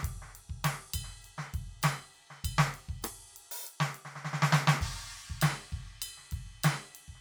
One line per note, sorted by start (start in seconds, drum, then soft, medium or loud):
0.01 kick soft
0.01 hi-hat pedal soft
0.05 ride medium
0.10 kick soft
0.22 snare soft
0.29 snare soft
0.35 ride medium
0.50 kick soft
0.64 snare medium
0.64 hi-hat pedal medium
0.64 ride loud
0.75 snare soft
0.94 kick soft
0.94 ride bell loud
1.01 kick soft
1.01 snare soft
1.21 hi-hat pedal soft
1.21 ride soft
1.38 snare medium
1.54 kick soft
1.54 ride medium
1.61 kick soft
1.64 kick soft
1.82 snare loud
1.82 hi-hat pedal medium
1.82 ride bell loud
2.14 ride soft
2.31 snare soft
2.44 kick soft
2.44 ride bell loud
2.51 kick soft
2.59 snare loud
2.67 snare soft
2.74 ride soft
2.89 kick soft
2.95 kick soft
3.03 cross-stick medium
3.03 hi-hat pedal medium
3.03 ride loud
3.37 ride medium
3.52 open hi-hat loud
3.67 ride medium
3.81 snare medium
3.91 hi-hat pedal soft
3.91 ride medium
4.05 snare soft
4.16 snare soft
4.25 snare medium
4.33 snare medium
4.42 snare loud
4.53 snare loud
4.68 snare loud
4.74 cross-stick medium
4.81 kick medium
4.81 crash medium
5.09 hi-hat pedal soft
5.30 kick soft
5.42 snare loud
5.42 hi-hat pedal medium
5.42 ride bell loud
5.70 kick soft
5.70 ride soft
5.79 kick soft
5.79 snare soft
5.86 snare soft
6.02 hi-hat pedal soft
6.02 ride bell loud
6.18 snare soft
6.21 snare soft
6.32 kick soft
6.32 ride medium
6.39 kick soft
6.63 snare loud
6.63 hi-hat pedal medium
6.63 ride bell loud
6.95 ride medium
7.08 kick soft
7.15 snare soft